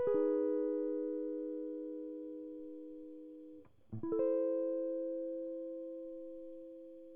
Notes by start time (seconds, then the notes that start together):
0.00 B4
0.07 G#4
0.15 D#4
4.04 E4
4.12 A4
4.19 C5